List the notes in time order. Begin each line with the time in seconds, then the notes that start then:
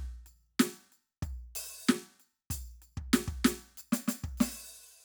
0.27 percussion
0.60 snare, percussion
0.93 percussion
1.23 kick, percussion
1.56 percussion
1.88 snare, percussion
1.91 percussion
2.21 percussion
2.51 kick, percussion
2.83 percussion
2.98 kick
3.14 snare, percussion
3.29 kick
3.46 snare, percussion
3.78 percussion
3.93 snare, percussion
4.09 snare, percussion
4.25 kick
4.38 snare, percussion
4.42 percussion